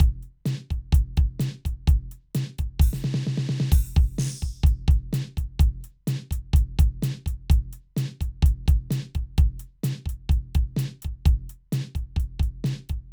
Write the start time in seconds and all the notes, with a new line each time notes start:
0.01 closed hi-hat, kick
0.24 closed hi-hat
0.47 closed hi-hat, snare
0.72 kick, closed hi-hat
0.94 closed hi-hat, kick
1.18 kick, snare, closed hi-hat
1.41 closed hi-hat, snare
1.57 snare
1.67 closed hi-hat, kick
1.89 closed hi-hat, kick
2.13 closed hi-hat, snare
2.36 closed hi-hat, snare
2.60 closed hi-hat, kick
2.81 open hi-hat, kick
2.95 snare
3.01 hi-hat pedal
3.05 snare
3.28 snare
3.39 snare
3.45 kick
3.50 snare
3.61 snare
3.73 open hi-hat, kick
3.98 kick
4.17 snare, hi-hat pedal, crash
4.27 snare
4.44 closed hi-hat, kick
4.65 closed hi-hat, kick
4.89 closed hi-hat, kick, snare
5.14 closed hi-hat, snare
5.31 snare
5.38 kick, closed hi-hat
5.61 closed hi-hat, kick
5.82 snare, closed hi-hat
6.09 closed hi-hat, snare
6.32 kick, closed hi-hat
6.55 closed hi-hat, kick
6.78 kick, snare, closed hi-hat
7.04 closed hi-hat, snare
7.27 closed hi-hat, kick
7.51 closed hi-hat, kick
7.74 snare, closed hi-hat
7.98 closed hi-hat, snare
8.14 snare
8.22 kick, closed hi-hat
8.44 closed hi-hat, kick
8.67 closed hi-hat, kick, snare
8.92 closed hi-hat, snare
9.16 kick, closed hi-hat
9.39 closed hi-hat, kick
9.59 snare, closed hi-hat
9.85 closed hi-hat, snare
10.07 closed hi-hat, kick
10.31 closed hi-hat, kick
10.56 closed hi-hat, kick
10.78 closed hi-hat, snare
11.04 closed hi-hat, kick
11.27 closed hi-hat, kick
11.51 closed hi-hat
11.74 closed hi-hat, snare
11.96 closed hi-hat, kick
12.18 closed hi-hat, kick
12.41 closed hi-hat, kick
12.66 closed hi-hat, snare
12.90 closed hi-hat, kick